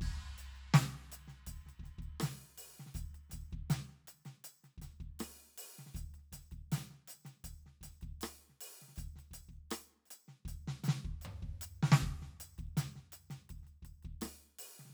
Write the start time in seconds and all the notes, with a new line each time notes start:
0.02 kick, crash
0.39 percussion
0.56 percussion
0.75 snare, percussion
0.83 snare
1.13 percussion
1.29 snare, percussion
1.48 kick, percussion
1.67 snare, percussion
1.80 kick, snare
1.86 percussion
1.99 kick, percussion
2.21 cross-stick, snare, percussion
2.59 percussion
2.80 snare
2.87 snare
2.95 kick, percussion
3.14 snare, percussion
3.30 kick, snare, percussion
3.52 kick, percussion
3.71 snare, percussion
3.90 snare
4.08 percussion
4.26 snare, percussion
4.45 percussion
4.65 snare, percussion
4.79 kick, snare, percussion
5.01 kick, percussion
5.20 cross-stick, percussion
5.59 percussion
5.79 snare
5.87 snare
5.95 kick, percussion
5.97 percussion
6.15 snare, percussion
6.33 kick, snare, percussion
6.52 kick, percussion
6.73 snare, percussion
6.79 snare
6.91 snare
7.08 percussion
7.11 percussion
7.26 snare, percussion
7.45 kick, percussion
7.67 snare
7.82 kick, snare, percussion
8.02 kick, percussion
8.22 cross-stick, percussion
8.50 snare
8.62 percussion
8.83 snare
8.89 snare
8.93 snare, percussion
8.99 kick, percussion
9.17 snare, percussion
9.32 kick, percussion
9.50 kick
9.54 percussion
9.72 cross-stick, percussion
10.06 percussion
10.11 percussion
10.29 snare
10.46 kick, percussion
10.68 snare
10.85 snare, percussion
10.89 snare
11.05 kick
11.22 percussion, floor tom
11.43 kick
11.62 percussion
11.84 snare
11.93 snare
12.03 kick
12.23 snare
12.41 percussion
12.59 kick, percussion
12.78 snare, percussion
12.96 snare
13.13 percussion
13.31 snare, percussion
13.50 kick, percussion
13.63 snare
13.68 percussion
13.83 kick, percussion
14.03 kick, percussion
14.22 cross-stick, percussion
14.26 cross-stick
14.60 percussion
14.80 snare
14.86 snare
14.90 snare